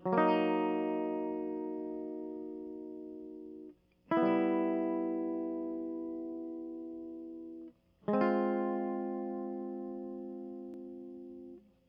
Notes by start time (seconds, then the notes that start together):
0.07 F#3
0.14 A#3
0.18 D#4
4.12 E4
4.18 B3
4.23 G3
8.09 G#3
8.14 C4
8.22 F4